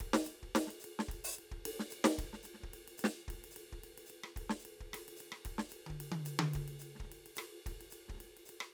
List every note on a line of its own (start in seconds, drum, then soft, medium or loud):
0.01 kick soft
0.01 ride medium
0.09 kick soft
0.14 snare loud
0.25 hi-hat pedal medium
0.25 ride medium
0.43 kick soft
0.56 snare medium
0.56 ride medium
0.68 snare soft
0.68 ride medium
0.80 hi-hat pedal medium
0.85 ride medium
1.00 snare medium
1.09 kick soft
1.09 ride medium
1.25 open hi-hat loud
1.34 hi-hat pedal medium
1.39 ride soft
1.52 kick soft
1.66 ride loud
1.80 snare medium
1.91 hi-hat pedal medium
1.91 ride medium
2.05 snare loud
2.19 kick soft
2.19 ride medium
2.25 kick soft
2.34 snare soft
2.44 snare soft
2.44 hi-hat pedal soft
2.44 ride medium
2.55 snare soft
2.61 kick soft
2.61 snare soft
2.65 snare soft
2.70 snare soft
2.70 ride medium
2.88 ride medium
2.98 hi-hat pedal medium
2.98 ride medium
3.05 snare medium
3.29 kick soft
3.29 ride medium
3.33 snare soft
3.37 snare soft
3.40 snare soft
3.42 snare soft
3.42 ride medium
3.52 hi-hat pedal soft
3.57 ride medium
3.73 kick soft
3.84 ride medium
3.98 ride medium
4.07 hi-hat pedal soft
4.07 ride soft
4.24 cross-stick medium
4.37 kick soft
4.37 ride medium
4.44 kick soft
4.50 snare medium
4.60 hi-hat pedal soft
4.66 ride medium
4.81 kick soft
4.94 cross-stick medium
4.94 ride medium
5.09 ride medium
5.17 hi-hat pedal soft
5.17 ride medium
5.33 cross-stick medium
5.46 kick soft
5.46 ride medium
5.59 snare medium
5.70 hi-hat pedal soft
5.70 ride medium
5.87 kick soft
5.87 high tom medium
6.01 ride medium
6.12 high tom medium
6.26 hi-hat pedal medium
6.26 ride medium
6.40 high tom loud
6.54 kick soft
6.54 ride medium
6.69 ride soft
6.80 hi-hat pedal soft
6.80 ride medium
6.96 snare soft
7.00 kick soft
7.00 snare soft
7.10 snare soft
7.10 ride medium
7.15 snare soft
7.27 ride soft
7.36 cross-stick medium
7.36 hi-hat pedal medium
7.36 ride medium
7.67 kick soft
7.67 snare soft
7.67 ride medium
7.74 kick soft
7.81 ride soft
7.91 hi-hat pedal soft
7.91 ride medium
8.09 kick soft
8.09 snare soft
8.14 kick soft
8.14 snare soft
8.18 snare soft
8.18 ride medium
8.37 ride soft
8.46 hi-hat pedal soft
8.46 ride medium
8.61 cross-stick medium